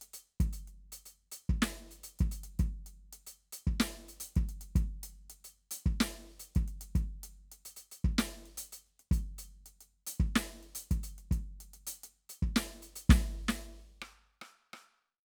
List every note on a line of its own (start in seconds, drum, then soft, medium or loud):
0.02 closed hi-hat medium
0.14 closed hi-hat medium
0.40 kick medium
0.40 closed hi-hat medium
0.53 closed hi-hat medium
0.68 closed hi-hat soft
0.92 closed hi-hat medium
1.06 closed hi-hat medium
1.32 closed hi-hat medium
1.50 kick medium
1.62 snare loud
1.91 closed hi-hat soft
2.04 closed hi-hat medium
2.19 kick medium
2.19 closed hi-hat medium
2.32 closed hi-hat medium
2.44 closed hi-hat medium
2.59 kick medium
2.59 closed hi-hat medium
2.87 closed hi-hat medium
3.13 closed hi-hat medium
3.27 closed hi-hat medium
3.53 closed hi-hat medium
3.67 kick medium
3.80 snare loud
4.09 closed hi-hat medium
4.20 closed hi-hat medium
4.36 kick medium
4.36 closed hi-hat soft
4.49 closed hi-hat medium
4.61 closed hi-hat medium
4.76 kick medium
4.76 closed hi-hat medium
5.04 closed hi-hat medium
5.30 closed hi-hat medium
5.45 closed hi-hat medium
5.71 closed hi-hat loud
5.86 kick medium
6.01 snare loud
6.26 closed hi-hat soft
6.40 closed hi-hat medium
6.55 kick medium
6.55 closed hi-hat medium
6.68 closed hi-hat soft
6.81 closed hi-hat medium
6.96 kick medium
6.96 closed hi-hat medium
7.24 closed hi-hat medium
7.52 closed hi-hat medium
7.66 closed hi-hat medium
7.77 closed hi-hat medium
7.92 closed hi-hat medium
8.05 kick medium
8.19 snare loud
8.46 closed hi-hat soft
8.58 closed hi-hat loud
8.73 closed hi-hat medium
8.87 closed hi-hat soft
9.00 closed hi-hat soft
9.12 closed hi-hat medium
9.12 kick medium
9.39 closed hi-hat medium
9.51 closed hi-hat soft
9.66 closed hi-hat medium
9.81 closed hi-hat medium
10.07 closed hi-hat loud
10.20 kick medium
10.36 snare loud
10.63 closed hi-hat soft
10.75 closed hi-hat loud
10.91 kick medium
10.91 closed hi-hat medium
11.04 closed hi-hat medium
11.18 closed hi-hat soft
11.31 kick medium
11.31 closed hi-hat medium
11.47 closed hi-hat soft
11.61 closed hi-hat medium
11.74 closed hi-hat medium
11.87 closed hi-hat loud
12.04 closed hi-hat medium
12.30 closed hi-hat medium
12.43 kick medium
12.56 snare loud
12.83 closed hi-hat medium
12.96 closed hi-hat medium
13.10 kick loud
13.10 snare loud
13.49 snare loud
14.02 cross-stick medium
14.42 cross-stick medium
14.74 cross-stick medium